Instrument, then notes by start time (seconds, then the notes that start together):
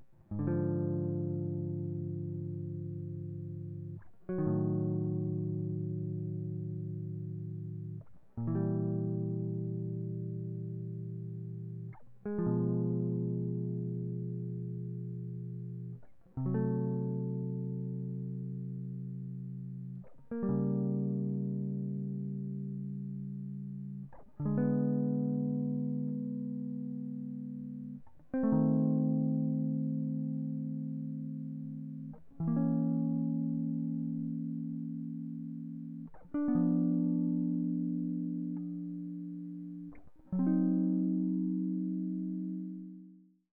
electric guitar
0.33 G#2
0.40 D3
0.48 F3
4.30 F#3
4.39 D#3
4.48 A2
8.39 A#2
8.48 E3
8.56 G3
12.26 G#3
12.39 F3
12.48 B2
16.39 C3
16.47 F#3
16.55 A3
20.32 A#3
20.44 G3
20.50 C#3
24.41 D3
24.46 G#3
24.58 B3
28.34 C4
28.44 A3
28.53 D#3
32.41 E3
32.48 A#3
32.57 C#4
36.35 D4
36.49 B3
36.56 F3
40.33 F#3
40.40 C4
40.47 D#4